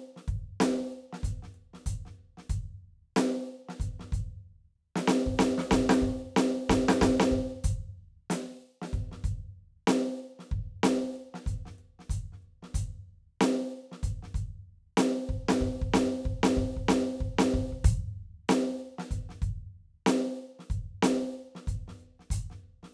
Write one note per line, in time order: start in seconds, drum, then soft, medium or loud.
0.17 snare soft
0.28 kick medium
0.28 closed hi-hat soft
0.61 closed hi-hat medium
0.61 snare loud
0.93 closed hi-hat soft
1.13 snare medium
1.24 closed hi-hat medium
1.24 kick medium
1.43 snare soft
1.55 closed hi-hat soft
1.74 snare soft
1.87 closed hi-hat loud
1.87 kick medium
2.06 snare soft
2.38 snare soft
2.50 closed hi-hat medium
2.50 kick medium
3.17 closed hi-hat medium
3.17 snare loud
3.49 closed hi-hat soft
3.69 snare medium
3.80 closed hi-hat medium
3.80 kick medium
4.00 snare soft
4.13 closed hi-hat medium
4.13 kick medium
4.96 snare loud
5.06 snare loud
5.06 hi-hat pedal soft
5.27 kick medium
5.40 snare loud
5.59 snare medium
5.72 kick medium
5.72 snare loud
5.90 snare loud
6.02 kick medium
6.07 snare soft
6.37 snare loud
6.70 kick medium
6.70 snare loud
6.89 snare loud
7.02 kick medium
7.02 snare loud
7.20 snare loud
7.32 kick medium
7.65 closed hi-hat loud
7.65 kick medium
8.31 closed hi-hat loud
8.31 snare loud
8.63 closed hi-hat soft
8.82 snare medium
8.94 kick medium
8.94 closed hi-hat soft
9.12 snare soft
9.25 closed hi-hat medium
9.25 kick medium
9.88 closed hi-hat medium
9.88 snare loud
10.20 closed hi-hat soft
10.40 snare soft
10.52 kick medium
10.52 closed hi-hat soft
10.84 closed hi-hat medium
10.84 snare loud
11.13 snare soft
11.13 closed hi-hat soft
11.35 snare medium
11.47 closed hi-hat medium
11.47 kick medium
11.66 snare soft
11.79 closed hi-hat soft
12.00 snare soft
12.10 closed hi-hat medium
12.10 kick medium
12.33 snare soft
12.43 closed hi-hat soft
12.63 snare soft
12.75 closed hi-hat loud
12.75 kick medium
13.41 closed hi-hat medium
13.41 snare loud
13.92 snare soft
14.04 closed hi-hat medium
14.04 kick medium
14.23 snare soft
14.35 closed hi-hat medium
14.35 kick medium
14.98 closed hi-hat loud
14.98 snare loud
15.30 kick medium
15.49 snare loud
15.61 kick medium
15.66 snare soft
15.82 kick medium
15.94 snare loud
16.26 kick medium
16.44 snare loud
16.57 kick medium
16.77 kick medium
16.85 kick soft
16.85 ride soft
16.89 snare loud
17.21 kick medium
17.39 snare loud
17.54 kick medium
17.73 kick soft
17.85 closed hi-hat loud
17.85 kick loud
18.49 closed hi-hat medium
18.49 snare loud
18.99 snare medium
19.11 closed hi-hat medium
19.11 kick medium
19.30 snare soft
19.43 closed hi-hat medium
19.43 kick medium
20.07 closed hi-hat medium
20.07 snare loud
20.39 closed hi-hat soft
20.60 snare soft
20.71 closed hi-hat soft
20.71 kick medium
21.03 closed hi-hat loud
21.03 snare loud
21.36 closed hi-hat soft
21.56 snare medium
21.68 closed hi-hat medium
21.68 kick medium
21.89 snare soft
22.00 closed hi-hat soft
22.20 snare soft
22.31 closed hi-hat loud
22.31 kick medium
22.51 snare soft
22.84 snare soft